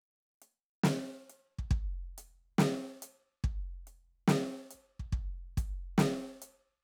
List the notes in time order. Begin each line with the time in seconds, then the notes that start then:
0.42 closed hi-hat
0.84 snare
1.30 closed hi-hat
1.59 kick
1.71 kick
2.18 closed hi-hat
2.58 snare
3.02 closed hi-hat
3.44 kick, crash
3.87 closed hi-hat
4.28 snare
4.71 kick, closed hi-hat
4.99 kick
5.13 kick
5.17 crash
5.57 kick, closed hi-hat
5.98 snare
6.42 closed hi-hat